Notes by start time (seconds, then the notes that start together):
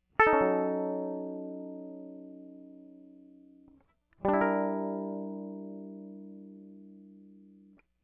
0.20 A4
0.27 D#4
0.34 C#4
0.42 F#3
4.26 G3 D4
4.34 E4
4.42 A#4